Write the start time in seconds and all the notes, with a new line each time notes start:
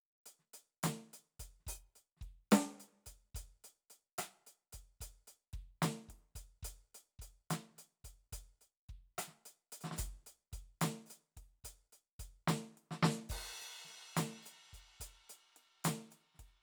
0.26 closed hi-hat
0.39 snare
0.53 closed hi-hat
0.83 closed hi-hat, snare
1.13 closed hi-hat
1.39 closed hi-hat, kick
1.59 snare
1.66 open hi-hat, kick
1.95 closed hi-hat
2.16 snare
2.21 kick, closed hi-hat
2.51 closed hi-hat, snare
2.80 closed hi-hat
3.06 closed hi-hat, kick
3.34 closed hi-hat, kick
3.40 kick
3.64 closed hi-hat
3.90 closed hi-hat
4.18 closed hi-hat, cross-stick
4.46 closed hi-hat
4.72 closed hi-hat, kick, snare
5.00 closed hi-hat, kick
5.27 closed hi-hat
5.53 kick, snare, closed hi-hat
5.82 closed hi-hat, snare
6.08 kick, closed hi-hat
6.35 closed hi-hat, kick
6.62 closed hi-hat, kick
6.94 closed hi-hat
7.19 closed hi-hat, kick
7.50 closed hi-hat, snare
7.76 closed hi-hat, snare
8.04 closed hi-hat, kick
8.32 closed hi-hat, kick
8.61 closed hi-hat
8.89 kick, closed hi-hat
9.18 closed hi-hat, cross-stick
9.27 snare
9.45 closed hi-hat
9.72 closed hi-hat
9.81 open hi-hat, snare
9.91 snare
9.96 closed hi-hat, kick, snare, hi-hat pedal
10.05 kick
10.26 closed hi-hat
10.52 closed hi-hat, kick, snare
10.81 closed hi-hat, snare
11.06 closed hi-hat, hi-hat pedal
11.36 kick, closed hi-hat
11.64 closed hi-hat, kick
11.92 closed hi-hat
12.19 closed hi-hat, kick
12.47 closed hi-hat, snare
12.77 closed hi-hat
12.91 snare
13.02 snare
13.29 kick, hi-hat pedal, crash
13.36 kick
13.61 closed hi-hat
13.84 snare, closed hi-hat
14.16 closed hi-hat, snare
14.42 closed hi-hat, hi-hat pedal
14.73 closed hi-hat, kick
15.00 closed hi-hat, kick
15.29 closed hi-hat
15.56 closed hi-hat
15.84 closed hi-hat, snare
16.10 snare, closed hi-hat, hi-hat pedal
16.34 snare
16.39 kick, closed hi-hat